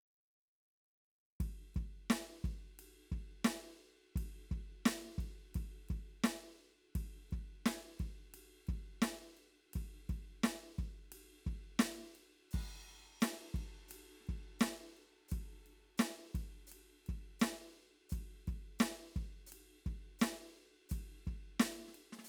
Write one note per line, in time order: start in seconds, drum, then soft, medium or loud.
1.40 kick soft
1.40 ride soft
1.75 kick soft
1.75 ride soft
2.10 snare loud
2.10 ride medium
2.44 kick soft
2.44 ride soft
2.79 ride medium
3.12 kick soft
3.12 ride soft
3.44 snare loud
3.44 ride medium
4.16 kick soft
4.16 ride soft
4.51 kick soft
4.85 snare loud
4.85 ride medium
5.18 kick soft
5.18 ride soft
5.55 kick soft
5.55 ride soft
5.89 kick soft
5.89 ride soft
6.24 snare loud
6.24 ride soft
6.95 kick soft
6.95 ride soft
7.31 kick soft
7.31 ride soft
7.66 snare loud
7.66 ride medium
7.99 kick soft
7.99 ride soft
8.34 ride medium
8.67 kick soft
8.67 ride soft
9.02 snare loud
9.02 ride soft
9.37 ride soft
9.73 kick soft
9.73 ride medium
10.09 kick soft
10.09 ride soft
10.43 snare loud
10.43 ride soft
10.78 kick soft
10.78 ride soft
11.12 ride medium
11.47 kick soft
11.47 ride soft
11.79 snare loud
11.79 ride medium
12.15 ride soft
12.51 kick soft
12.51 hi-hat pedal soft
12.51 crash soft
12.85 ride soft
13.20 snare loud
13.20 hi-hat pedal soft
13.20 ride medium
13.54 kick soft
13.54 ride soft
13.88 hi-hat pedal soft
13.88 ride medium
14.20 snare soft
14.27 kick soft
14.27 ride soft
14.59 snare loud
14.59 hi-hat pedal soft
14.59 ride soft
14.67 snare soft
14.97 ride soft
15.28 kick soft
15.28 hi-hat pedal soft
15.28 ride soft
15.66 ride soft
15.98 snare loud
15.98 hi-hat pedal medium
15.98 ride soft
16.35 kick soft
16.35 ride soft
16.67 hi-hat pedal medium
16.72 ride soft
17.06 kick soft
17.06 ride soft
17.39 snare loud
17.39 hi-hat pedal medium
17.39 ride medium
18.09 kick soft
18.09 hi-hat pedal medium
18.09 ride soft
18.47 kick soft
18.47 ride soft
18.79 snare loud
18.79 hi-hat pedal medium
18.79 ride medium
19.16 kick soft
19.16 ride soft
19.47 hi-hat pedal medium
19.52 ride medium
19.86 kick soft
19.86 ride soft
20.19 snare loud
20.19 hi-hat pedal soft
20.19 ride medium
20.89 kick soft
20.89 hi-hat pedal medium
20.89 ride medium
21.26 kick soft
21.26 ride soft
21.59 snare loud
21.59 hi-hat pedal medium
21.59 ride medium
21.88 snare soft
21.94 ride soft
22.12 snare soft
22.19 snare soft
22.24 snare soft
22.24 hi-hat pedal medium